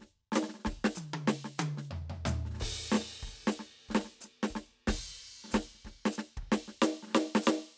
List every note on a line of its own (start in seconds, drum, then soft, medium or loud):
0.01 kick soft
0.01 snare soft
0.32 snare medium
0.32 hi-hat pedal loud
0.36 snare loud
0.43 snare soft
0.49 snare soft
0.54 snare soft
0.59 snare soft
0.65 kick medium
0.65 snare medium
0.84 snare loud
0.95 hi-hat pedal loud
0.95 high tom medium
1.14 high tom medium
1.28 snare loud
1.44 snare soft
1.58 hi-hat pedal loud
1.58 high tom loud
1.77 snare soft
1.91 floor tom medium
2.10 floor tom medium
2.25 hi-hat pedal loud
2.25 floor tom loud
2.45 snare soft
2.50 kick soft
2.50 snare soft
2.54 snare soft
2.57 snare soft
2.57 ride loud
2.62 kick medium
2.92 snare loud
2.92 hi-hat pedal loud
2.94 snare loud
3.01 snare soft
3.08 snare soft
3.11 snare soft
3.23 kick soft
3.23 snare soft
3.47 snare loud
3.47 hi-hat pedal loud
3.59 snare soft
3.89 kick soft
3.89 snare medium
3.95 snare loud
3.99 kick soft
3.99 snare soft
4.05 snare soft
4.11 snare soft
4.21 snare soft
4.21 hi-hat pedal loud
4.43 snare medium
4.50 kick soft
4.55 snare medium
4.87 kick medium
4.87 snare medium
4.87 hi-hat pedal loud
4.87 crash loud
5.44 snare soft
5.48 snare soft
5.50 snare soft
5.50 hi-hat pedal loud
5.52 kick soft
5.52 snare soft
5.54 snare loud
5.74 snare soft
5.85 kick soft
5.85 snare soft
6.06 snare loud
6.12 hi-hat pedal loud
6.18 snare medium
6.37 kick soft
6.52 snare loud
6.68 snare soft
6.82 snare loud
6.82 hi-hat pedal loud
7.03 snare soft
7.07 snare soft
7.10 snare soft
7.13 snare soft
7.15 snare loud
7.35 snare loud
7.43 hi-hat pedal loud
7.47 snare loud